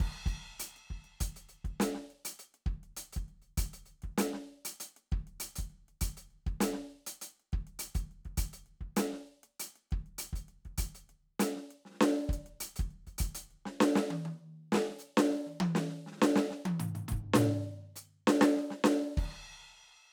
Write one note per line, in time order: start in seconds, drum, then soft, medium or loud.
0.00 kick medium
0.00 crash medium
0.13 closed hi-hat soft
0.26 closed hi-hat soft
0.26 kick medium
0.43 closed hi-hat soft
0.60 closed hi-hat loud
0.76 closed hi-hat soft
0.90 kick soft
0.90 closed hi-hat soft
1.04 closed hi-hat soft
1.20 closed hi-hat loud
1.20 kick medium
1.36 closed hi-hat medium
1.49 closed hi-hat soft
1.64 kick medium
1.64 closed hi-hat soft
1.80 closed hi-hat loud
1.80 kick soft
1.80 snare loud
1.95 snare soft
2.10 closed hi-hat soft
2.25 closed hi-hat loud
2.39 closed hi-hat medium
2.54 closed hi-hat soft
2.66 kick medium
2.66 closed hi-hat soft
2.83 closed hi-hat soft
2.97 closed hi-hat loud
3.13 closed hi-hat medium
3.13 kick medium
3.28 closed hi-hat soft
3.42 closed hi-hat soft
3.57 closed hi-hat loud
3.57 kick medium
3.73 closed hi-hat medium
3.86 closed hi-hat soft
4.02 kick soft
4.02 closed hi-hat soft
4.18 closed hi-hat loud
4.18 snare loud
4.33 snare medium
4.47 closed hi-hat soft
4.65 closed hi-hat loud
4.80 closed hi-hat loud
4.96 closed hi-hat soft
5.12 kick medium
5.12 closed hi-hat soft
5.27 closed hi-hat soft
5.40 closed hi-hat loud
5.56 closed hi-hat medium
5.56 kick medium
5.70 closed hi-hat soft
5.88 closed hi-hat soft
6.01 closed hi-hat loud
6.01 kick medium
6.17 closed hi-hat medium
6.30 closed hi-hat soft
6.46 kick medium
6.46 closed hi-hat soft
6.61 closed hi-hat loud
6.61 snare loud
6.73 snare soft
6.90 closed hi-hat soft
7.07 closed hi-hat loud
7.21 closed hi-hat loud
7.40 closed hi-hat soft
7.52 kick medium
7.52 closed hi-hat soft
7.67 closed hi-hat soft
7.79 closed hi-hat loud
7.95 closed hi-hat medium
7.95 kick medium
8.11 closed hi-hat soft
8.25 kick soft
8.25 closed hi-hat soft
8.37 closed hi-hat loud
8.37 kick medium
8.53 closed hi-hat medium
8.66 closed hi-hat soft
8.81 kick soft
8.96 closed hi-hat loud
8.96 snare loud
9.12 snare soft
9.27 closed hi-hat soft
9.43 closed hi-hat soft
9.60 closed hi-hat loud
9.76 closed hi-hat soft
9.91 kick medium
9.91 closed hi-hat soft
10.06 closed hi-hat soft
10.18 closed hi-hat loud
10.33 closed hi-hat medium
10.33 kick medium
10.48 closed hi-hat soft
10.65 kick soft
10.65 closed hi-hat soft
10.78 closed hi-hat loud
10.78 kick medium
10.95 closed hi-hat medium
11.09 closed hi-hat soft
11.39 closed hi-hat loud
11.39 snare loud
11.56 snare soft
11.71 closed hi-hat soft
11.85 snare soft
11.90 snare soft
11.94 snare soft
12.01 snare loud
12.29 kick medium
12.33 closed hi-hat medium
12.46 closed hi-hat soft
12.60 closed hi-hat loud
12.76 closed hi-hat medium
12.76 kick medium
12.91 closed hi-hat soft
13.07 closed hi-hat soft
13.07 kick soft
13.18 closed hi-hat loud
13.18 kick medium
13.35 closed hi-hat loud
13.51 closed hi-hat soft
13.66 snare medium
13.80 snare loud
13.96 snare loud
14.10 high tom medium
14.25 high tom medium
14.72 snare loud
14.74 snare loud
14.90 snare soft
14.99 hi-hat pedal medium
15.17 snare loud
15.31 snare soft
15.46 high tom soft
15.60 high tom loud
15.75 snare loud
15.89 snare soft
16.06 snare soft
16.12 snare soft
16.16 snare soft
16.22 snare loud
16.36 snare loud
16.51 snare soft
16.65 high tom loud
16.80 mid tom medium
16.95 mid tom medium
17.08 kick medium
17.08 mid tom medium
17.34 snare loud
17.34 mid tom loud
17.96 hi-hat pedal loud
18.27 snare loud
18.41 snare loud
18.56 snare soft
18.71 snare medium
18.84 snare loud
19.17 kick medium
19.17 crash medium
19.31 cross-stick soft